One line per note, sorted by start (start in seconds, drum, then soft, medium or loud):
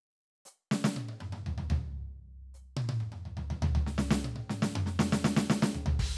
0.45 hi-hat pedal medium
0.71 snare loud
0.84 snare loud
0.96 high tom medium
1.09 high tom medium
1.20 mid tom medium
1.32 mid tom medium
1.46 floor tom medium
1.58 floor tom medium
1.70 floor tom loud
2.54 hi-hat pedal soft
2.77 high tom loud
2.89 high tom loud
3.00 mid tom medium
3.12 mid tom medium
3.25 floor tom medium
3.37 floor tom medium
3.50 floor tom medium
3.62 floor tom loud
3.75 floor tom loud
3.86 snare medium
3.98 snare loud
4.11 snare loud
4.24 high tom medium
4.36 high tom medium
4.49 snare medium
4.62 snare loud
4.75 mid tom loud
4.86 snare medium
4.99 snare loud
5.12 snare loud
5.24 snare loud
5.36 snare loud
5.50 snare loud
5.62 snare loud
5.75 floor tom medium
5.86 floor tom loud
5.99 kick medium
5.99 crash loud